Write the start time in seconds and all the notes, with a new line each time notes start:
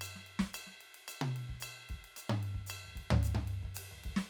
0.01 hi-hat pedal, ride bell
0.15 snare
0.26 ride
0.39 kick, snare
0.53 hi-hat pedal, ride bell
0.67 snare
0.81 ride
0.94 ride
1.08 hi-hat pedal, ride bell
1.21 high tom
1.36 ride
1.49 kick
1.54 snare
1.60 hi-hat pedal, ride bell
1.89 kick, ride
2.04 ride
2.16 hi-hat pedal, ride bell
2.29 mid tom
2.43 ride
2.54 kick
2.66 hi-hat pedal, ride bell
2.84 floor tom
2.95 kick, ride
3.10 floor tom
3.23 hi-hat pedal, ride
3.35 mid tom
3.47 ride
3.62 kick, floor tom
3.74 hi-hat pedal, ride
3.91 floor tom
4.04 kick, ride
4.11 kick
4.16 snare